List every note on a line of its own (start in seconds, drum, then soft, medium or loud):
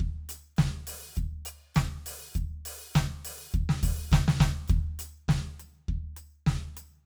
0.01 kick medium
0.30 percussion loud
0.57 kick medium
0.57 snare loud
0.57 percussion soft
0.83 kick soft
0.88 percussion loud
1.16 kick medium
1.16 percussion medium
1.46 percussion loud
1.49 percussion medium
1.76 kick medium
1.76 snare loud
1.76 percussion medium
2.07 percussion soft
2.07 percussion loud
2.35 kick medium
2.35 percussion medium
2.66 percussion loud
2.95 kick medium
2.95 snare loud
2.95 percussion medium
3.26 percussion soft
3.26 percussion loud
3.53 kick medium
3.53 percussion medium
3.56 percussion soft
3.70 snare loud
3.84 kick loud
3.84 percussion loud
4.12 kick loud
4.12 snare loud
4.12 percussion medium
4.29 snare loud
4.41 kick medium
4.41 snare loud
4.69 kick loud
4.69 percussion medium
5.00 percussion loud
5.29 kick medium
5.29 snare loud
5.61 percussion medium
5.89 kick medium
6.18 percussion medium
6.47 kick medium
6.47 snare loud
6.78 percussion loud